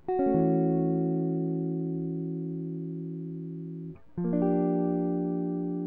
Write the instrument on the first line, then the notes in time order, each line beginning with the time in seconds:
electric guitar
0.09 F#4
0.19 C#4
0.27 A3
0.35 E3
4.19 F3
4.25 A#3
4.33 D4
4.42 G4